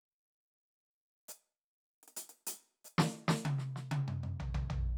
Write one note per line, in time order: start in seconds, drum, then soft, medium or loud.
1.28 hi-hat pedal loud
2.03 closed hi-hat soft
2.08 closed hi-hat soft
2.16 closed hi-hat loud
2.29 closed hi-hat medium
2.47 open hi-hat loud
2.84 hi-hat pedal medium
2.98 snare loud
3.28 snare loud
3.45 high tom loud
3.58 snare soft
3.76 snare soft
3.91 high tom loud
4.08 mid tom medium
4.23 mid tom medium
4.40 floor tom medium
4.54 floor tom loud
4.70 floor tom loud